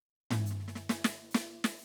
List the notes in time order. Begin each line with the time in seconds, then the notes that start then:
0.31 snare, floor tom
0.46 hi-hat pedal
0.50 snare
0.55 snare
0.60 snare
0.68 snare
0.75 snare
0.89 snare, hi-hat pedal
1.04 snare
1.31 snare, hi-hat pedal
1.64 snare
1.79 hi-hat pedal